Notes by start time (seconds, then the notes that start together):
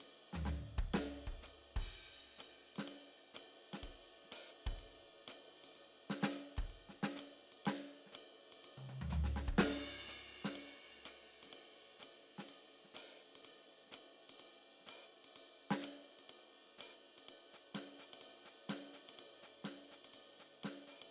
0.01 ride
0.33 snare, floor tom
0.46 snare, floor tom, hi-hat pedal
0.79 kick
0.90 hi-hat pedal, ride
0.94 snare
1.27 kick
1.43 hi-hat pedal, ride
1.77 kick, crash
2.39 hi-hat pedal, ride
2.76 snare, ride
2.84 hi-hat pedal, ride
3.35 hi-hat pedal, ride
3.73 snare, ride
3.83 kick, hi-hat pedal, ride
4.25 snare
4.32 hi-hat pedal, ride
4.67 kick, ride
4.78 hi-hat pedal, ride
5.28 hi-hat pedal, ride
5.64 ride
5.76 hi-hat pedal, ride
6.10 snare
6.21 snare, hi-hat pedal, ride
6.41 hi-hat pedal
6.57 kick, ride
6.70 ride
6.89 snare
7.03 snare
7.17 hi-hat pedal, ride
7.37 hi-hat pedal
7.53 ride
7.62 hi-hat pedal
7.66 snare, ride
8.06 snare
8.13 hi-hat pedal, ride
8.53 ride
8.60 hi-hat pedal
8.65 ride
8.78 high tom
8.90 high tom
9.02 floor tom
9.10 floor tom, hi-hat pedal
9.24 snare
9.37 snare
9.48 kick
9.56 snare, hi-hat pedal, ride
10.09 hi-hat pedal, ride
10.45 snare, ride
10.56 hi-hat pedal, ride
10.98 snare
11.06 hi-hat pedal, ride
11.44 snare, hi-hat pedal, ride
11.53 ride
12.00 hi-hat pedal, ride
12.39 snare, ride
12.49 ride
12.85 snare
12.95 hi-hat pedal, ride
13.36 ride
13.42 hi-hat pedal, ride
13.87 snare
13.92 hi-hat pedal, ride
14.30 ride
14.38 hi-hat pedal, ride
14.81 snare
14.87 hi-hat pedal, ride
15.25 ride
15.31 hi-hat pedal
15.37 ride
15.71 snare
15.82 hi-hat pedal, ride
16.19 ride
16.25 hi-hat pedal
16.30 ride
16.66 snare
16.79 hi-hat pedal, ride
17.19 ride
17.29 ride
17.54 hi-hat pedal
17.75 snare, ride
18.00 hi-hat pedal
18.14 ride
18.22 ride
18.46 hi-hat pedal
18.68 snare, hi-hat pedal, ride
18.94 hi-hat pedal
19.09 ride
19.16 hi-hat pedal, ride
19.43 hi-hat pedal
19.65 snare, ride
19.92 hi-hat pedal
20.05 ride
20.14 hi-hat pedal, ride
20.40 hi-hat pedal
20.62 snare, hi-hat pedal, ride
20.88 hi-hat pedal
21.02 ride